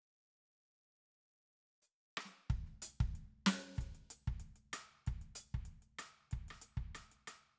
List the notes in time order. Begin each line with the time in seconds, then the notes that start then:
1.82 hi-hat pedal
2.17 cross-stick
2.25 snare
2.50 kick, closed hi-hat
2.66 snare
2.82 closed hi-hat
3.00 kick
3.15 closed hi-hat
3.46 snare, open hi-hat
3.63 snare
3.75 kick, hi-hat pedal
3.81 closed hi-hat
3.95 closed hi-hat
4.10 closed hi-hat
4.27 kick
4.40 closed hi-hat
4.56 closed hi-hat
4.73 cross-stick, closed hi-hat
5.07 kick, closed hi-hat
5.21 closed hi-hat
5.35 closed hi-hat
5.54 kick
5.65 closed hi-hat
5.82 closed hi-hat
5.99 cross-stick, closed hi-hat
6.31 kick, closed hi-hat
6.48 cross-stick, closed hi-hat
6.62 closed hi-hat
6.77 kick
6.95 cross-stick, closed hi-hat
7.12 closed hi-hat
7.27 cross-stick, closed hi-hat